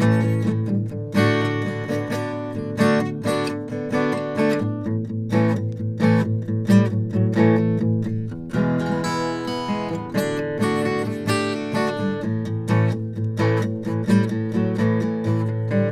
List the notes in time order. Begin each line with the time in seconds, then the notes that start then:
0.00 E3 A3 C#4
0.22 A2 E3 A3
0.44 A2 E3 C#4
0.49 A3
0.68 D3 G3
0.87 D3
1.14 D3 A3
1.19 F#4
1.41 D3 A3
1.63 D3
1.68 A3 D4
1.85 D3
1.91 B3 D4
2.12 D3 B3 D4 F#4
2.57 D3 A3 D4
2.80 D3 A3 D4 F#4
3.02 D3
3.23 D3 B3
3.28 D4 F#4
3.49 D3
3.69 D3
3.74 B3 D4
3.94 D3 B3 D4 F#4
4.14 D3 B3
4.36 D3 A3 D4 F#4
4.52 G#3
4.61 A2
4.86 A2 E3
5.06 A2 E3
5.32 A2 E3
5.36 A3 C#4
5.58 A2
5.78 A2
6.00 A2 E3
6.04 A3 C#4
6.23 A2
6.43 A2
6.67 A2
6.71 G3 A3
6.87 A2 F#3
7.12 A2 F#3
7.18 A3
7.35 A2 E3
7.41 A3
7.58 E3 A3
7.78 A2 E3 A3
8.04 A2 D3
8.33 E2
8.51 E2
8.56 B2 E3 G#3
8.81 E2 B2
8.88 E3 G#3
8.93 B3
9.05 B3 E4
9.15 B3
9.49 B3
9.59 B3
9.70 G#3
9.91 E3 B3
10.16 D3 G#3 D4
10.27 D4 F#4
10.59 D3 A3
10.64 D4 F#4
10.73 D4
10.83 D4 F#4
10.94 D4
11.03 D3 D4 G4
11.09 A3
11.29 A3 D4 G4
11.48 G4
11.74 D3 A3 D4
11.78 F#4
11.89 G3
12.01 D3
12.24 A2 E3
12.47 A2 E3
12.69 A2 E3 A3
12.73 C#4
12.92 A2
13.18 A2
13.39 A2 E3 A3
13.44 C#4
13.63 A2
13.85 A2 E3
14.06 A2
14.10 G3
14.29 A2
14.54 A2 F#3
14.77 A2 E3
15.02 A2 E3
15.26 A2 E3
15.72 D3